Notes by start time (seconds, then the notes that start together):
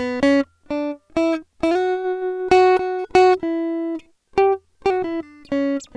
0.01 B3
0.24 C#4
0.72 D4
1.18 E4
1.64 E4
1.76 F#4
2.52 F#4
2.78 F#4
3.16 F#4
3.44 E4
4.39 G4
4.87 F#4
5.03 E4 G4
5.21 D4
5.53 C#4